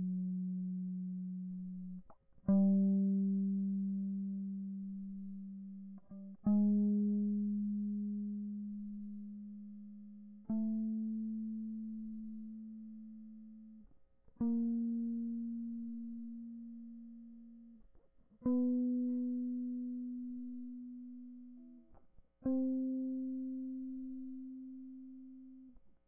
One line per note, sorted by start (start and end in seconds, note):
2.50 6.01 G3
6.48 10.44 G#3
10.51 13.83 A3
14.42 17.78 A#3
18.47 21.81 B3
22.47 25.72 C4